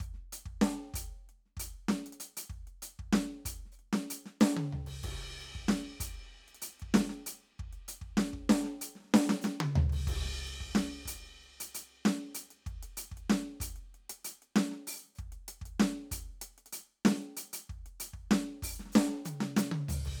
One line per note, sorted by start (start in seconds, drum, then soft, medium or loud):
0.03 kick medium
0.03 closed hi-hat soft
0.03 hi-hat pedal soft
0.14 snare soft
0.32 closed hi-hat loud
0.46 kick soft
0.61 snare loud
0.94 closed hi-hat loud
0.94 kick medium
1.29 closed hi-hat soft
1.46 snare soft
1.57 closed hi-hat loud
1.57 kick soft
1.88 snare loud
2.06 closed hi-hat medium
2.12 closed hi-hat medium
2.20 closed hi-hat loud
2.37 closed hi-hat loud
2.49 kick soft
2.49 closed hi-hat soft
2.67 closed hi-hat soft
2.82 closed hi-hat loud
2.99 kick soft
3.13 snare loud
3.45 closed hi-hat loud
3.45 kick soft
3.65 snare soft
3.72 hi-hat pedal soft
3.79 closed hi-hat soft
3.93 snare medium
4.10 closed hi-hat loud
4.26 snare soft
4.40 snare loud
4.40 hi-hat pedal medium
4.57 high tom loud
4.73 floor tom medium
4.86 kick soft
4.86 crash medium
5.03 kick medium
5.03 ride loud
5.39 closed hi-hat soft
5.55 kick soft
5.68 snare loud
6.00 closed hi-hat loud
6.00 kick medium
6.48 closed hi-hat soft
6.54 closed hi-hat medium
6.62 closed hi-hat loud
6.80 kick soft
6.80 closed hi-hat soft
6.94 snare loud
7.09 snare soft
7.26 closed hi-hat loud
7.44 closed hi-hat soft
7.59 kick soft
7.59 closed hi-hat soft
7.73 closed hi-hat soft
7.88 closed hi-hat loud
8.01 kick soft
8.17 snare loud
8.33 kick soft
8.49 snare loud
8.64 snare soft
8.81 closed hi-hat loud
8.95 snare soft
9.00 snare soft
9.04 snare soft
9.08 snare soft
9.11 snare soft
9.14 snare loud
9.29 snare loud
9.42 snare medium
9.42 hi-hat pedal medium
9.60 high tom loud
9.76 floor tom loud
9.89 kick soft
9.89 crash medium
10.07 kick medium
10.07 ride loud
10.25 snare soft
10.47 closed hi-hat soft
10.60 kick soft
10.75 snare loud
11.05 closed hi-hat loud
11.05 kick soft
11.24 closed hi-hat soft
11.43 closed hi-hat soft
11.60 closed hi-hat loud
11.75 closed hi-hat loud
12.05 snare loud
12.05 crash soft
12.35 closed hi-hat loud
12.50 closed hi-hat medium
12.66 kick medium
12.66 closed hi-hat soft
12.83 closed hi-hat medium
12.97 closed hi-hat loud
13.11 kick soft
13.17 closed hi-hat soft
13.30 snare loud
13.60 closed hi-hat loud
13.60 kick medium
13.76 closed hi-hat soft
13.94 closed hi-hat soft
14.09 closed hi-hat loud
14.24 closed hi-hat loud
14.42 closed hi-hat soft
14.56 snare loud
14.71 snare soft
14.87 open hi-hat loud
15.15 kick soft
15.15 closed hi-hat soft
15.15 hi-hat pedal soft
15.32 closed hi-hat soft
15.48 closed hi-hat loud
15.61 kick soft
15.65 closed hi-hat medium
15.80 snare loud
16.11 closed hi-hat loud
16.11 kick soft
16.41 closed hi-hat loud
16.58 closed hi-hat soft
16.66 closed hi-hat medium
16.73 closed hi-hat loud
17.05 snare loud
17.22 closed hi-hat soft
17.37 closed hi-hat loud
17.53 closed hi-hat loud
17.69 kick soft
17.69 closed hi-hat soft
17.86 closed hi-hat soft
18.00 closed hi-hat loud
18.13 kick soft
18.31 snare loud
18.62 open hi-hat loud
18.62 kick medium
18.79 snare soft
18.85 snare soft
18.90 snare soft
18.90 hi-hat pedal medium
18.95 snare loud
19.08 snare soft
19.13 snare soft
19.25 hi-hat pedal loud
19.25 high tom medium
19.40 snare medium
19.56 snare loud
19.56 hi-hat pedal loud
19.71 high tom loud
19.88 floor tom medium
19.88 hi-hat pedal loud
20.05 kick soft
20.05 crash medium